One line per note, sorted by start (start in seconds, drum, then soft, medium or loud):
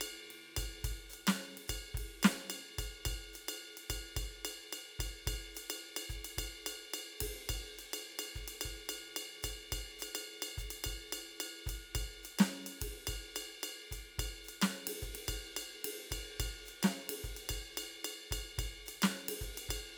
0.01 hi-hat pedal medium
0.01 ride bell loud
0.30 ride medium
0.57 kick soft
0.57 hi-hat pedal medium
0.57 ride bell loud
0.63 kick soft
0.84 kick soft
0.84 ride bell loud
0.90 kick soft
0.93 kick soft
1.09 hi-hat pedal medium
1.14 ride bell medium
1.27 snare loud
1.27 ride bell loud
1.57 ride medium
1.68 kick soft
1.68 hi-hat pedal medium
1.68 ride bell loud
1.94 kick soft
1.94 ride medium
2.02 kick soft
2.23 snare loud
2.23 hi-hat pedal medium
2.23 ride bell loud
2.50 ride bell loud
2.78 kick soft
2.78 hi-hat pedal medium
2.78 ride bell loud
3.05 kick soft
3.05 ride bell loud
3.12 kick soft
3.15 kick soft
3.33 hi-hat pedal medium
3.33 ride bell medium
3.48 ride bell loud
3.77 ride bell medium
3.90 kick soft
3.90 hi-hat pedal medium
3.90 ride bell loud
4.16 kick soft
4.16 ride bell loud
4.24 kick soft
4.45 hi-hat pedal medium
4.45 ride bell loud
4.73 ride bell loud
4.99 kick soft
4.99 hi-hat pedal medium
4.99 ride bell loud
5.27 kick soft
5.27 ride bell loud
5.33 kick soft
5.54 hi-hat pedal medium
5.54 ride bell medium
5.70 ride bell loud
5.97 ride bell loud
6.09 kick soft
6.09 hi-hat pedal medium
6.25 ride bell medium
6.38 kick soft
6.38 ride bell loud
6.66 hi-hat pedal medium
6.66 ride bell loud
6.94 ride bell loud
7.21 kick soft
7.21 hi-hat pedal soft
7.21 ride loud
7.49 kick soft
7.49 ride bell loud
7.79 hi-hat pedal soft
7.79 ride bell medium
7.93 ride bell loud
8.19 ride bell loud
8.35 kick soft
8.35 hi-hat pedal soft
8.48 ride bell medium
8.61 kick soft
8.61 ride bell loud
8.89 hi-hat pedal medium
8.89 ride bell loud
9.16 ride bell loud
9.43 kick soft
9.43 hi-hat pedal medium
9.43 ride bell loud
9.72 kick soft
9.72 ride bell loud
9.99 hi-hat pedal medium
9.99 ride bell loud
10.15 ride bell loud
10.42 ride bell loud
10.58 kick soft
10.58 hi-hat pedal medium
10.70 ride bell medium
10.84 kick soft
10.84 ride bell loud
11.13 hi-hat pedal medium
11.13 ride bell loud
11.40 ride bell loud
11.66 kick soft
11.66 hi-hat pedal medium
11.66 ride bell medium
11.95 kick soft
11.95 ride bell loud
12.05 kick soft
12.23 hi-hat pedal soft
12.23 ride bell medium
12.39 snare loud
12.39 ride bell loud
12.66 ride bell medium
12.80 kick soft
12.80 hi-hat pedal medium
12.80 ride loud
13.07 kick soft
13.07 ride bell loud
13.35 hi-hat pedal medium
13.35 ride bell loud
13.63 ride bell loud
13.91 kick soft
13.91 hi-hat pedal medium
13.91 ride bell medium
14.19 kick soft
14.19 ride bell loud
14.24 kick soft
14.44 hi-hat pedal soft
14.49 ride bell medium
14.62 snare medium
14.62 ride bell loud
14.87 ride loud
15.01 kick soft
15.01 hi-hat pedal medium
15.15 ride medium
15.28 kick soft
15.28 ride bell loud
15.57 hi-hat pedal medium
15.57 ride bell loud
15.84 ride loud
16.11 kick soft
16.11 hi-hat pedal soft
16.11 ride bell loud
16.40 kick soft
16.40 ride bell loud
16.45 kick soft
16.65 hi-hat pedal medium
16.65 ride bell medium
16.83 snare loud
16.83 ride bell loud
17.09 ride loud
17.23 kick soft
17.23 hi-hat pedal medium
17.37 ride bell medium
17.49 kick soft
17.49 ride bell loud
17.77 hi-hat pedal medium
17.77 ride bell loud
18.05 ride bell loud
18.31 kick soft
18.31 hi-hat pedal soft
18.31 ride bell loud
18.58 kick soft
18.58 ride bell loud
18.67 kick soft
18.86 hi-hat pedal medium
18.86 ride bell medium
19.02 snare loud
19.02 ride bell loud
19.28 ride loud
19.41 kick soft
19.41 hi-hat pedal medium
19.58 ride bell medium
19.69 kick soft
19.69 ride bell loud